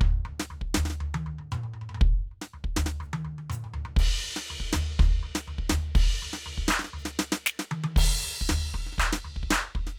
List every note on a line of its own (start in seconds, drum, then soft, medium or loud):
0.01 kick loud
0.01 floor tom loud
0.25 floor tom medium
0.40 snare medium
0.50 floor tom medium
0.62 kick medium
0.75 snare loud
0.75 floor tom loud
0.85 snare medium
0.90 snare medium
1.01 floor tom medium
1.14 high tom loud
1.26 floor tom medium
1.39 mid tom soft
1.52 hi-hat pedal soft
1.52 mid tom loud
1.64 mid tom medium
1.74 mid tom medium
1.82 mid tom medium
1.89 mid tom medium
1.95 mid tom medium
2.01 kick loud
2.32 floor tom soft
2.42 snare medium
2.54 floor tom medium
2.64 kick medium
2.77 snare loud
2.77 floor tom loud
2.86 snare medium
3.00 floor tom medium
3.00 hi-hat pedal soft
3.13 high tom loud
3.25 floor tom medium
3.38 high tom medium
3.50 hi-hat pedal medium
3.50 mid tom loud
3.64 mid tom medium
3.74 floor tom loud
3.85 floor tom medium
3.97 kick loud
3.97 ride loud
4.24 floor tom soft
4.36 snare medium
4.50 floor tom medium
4.60 kick medium
4.73 snare loud
4.73 floor tom loud
4.99 kick loud
4.99 snare soft
4.99 floor tom loud
5.23 floor tom medium
5.35 snare loud
5.48 floor tom medium
5.59 kick medium
5.70 snare loud
5.70 floor tom loud
5.95 kick loud
5.95 ride loud
6.22 floor tom medium
6.33 snare medium
6.46 floor tom medium
6.58 kick medium
6.68 snare loud
6.68 percussion loud
6.79 snare medium
6.84 snare soft
6.94 floor tom medium
6.99 hi-hat pedal soft
7.05 snare medium
7.19 snare loud
7.32 snare loud
7.46 snare loud
7.59 snare medium
7.71 high tom loud
7.84 high tom loud
7.96 kick loud
7.96 crash medium
8.23 floor tom medium
8.41 kick medium
8.49 snare loud
8.49 floor tom loud
8.74 kick medium
8.74 floor tom medium
8.87 snare soft
8.93 snare soft
8.98 kick medium
8.98 snare soft
8.98 percussion loud
9.13 snare loud
9.25 floor tom medium
9.36 kick medium
9.43 kick medium
9.51 snare loud
9.51 percussion loud
9.75 kick medium
9.75 floor tom medium
9.87 snare soft